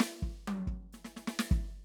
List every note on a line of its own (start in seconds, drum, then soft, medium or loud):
0.00 snare loud
0.22 kick medium
0.47 high tom loud
0.67 kick medium
0.92 snare soft
0.92 hi-hat pedal soft
1.04 snare medium
1.16 snare soft
1.27 snare medium
1.39 snare loud
1.51 kick medium